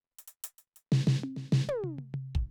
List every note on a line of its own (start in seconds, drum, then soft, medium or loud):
0.18 closed hi-hat medium
0.27 closed hi-hat medium
0.44 closed hi-hat loud
0.58 closed hi-hat soft
0.76 closed hi-hat soft
0.92 snare loud
1.07 snare loud
1.23 high tom loud
1.36 snare medium
1.52 snare loud
1.68 high tom loud
1.84 floor tom medium
1.98 floor tom medium
2.14 floor tom medium
2.35 kick medium